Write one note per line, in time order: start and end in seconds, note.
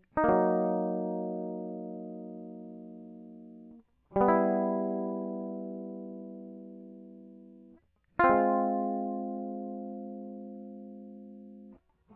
0.18 3.82 D#4
0.25 3.83 A#3
0.30 3.77 F#3
4.17 7.78 G3
4.21 7.79 B3
4.29 7.82 E4
8.20 11.80 F4
8.25 11.80 C4
8.31 11.77 G#3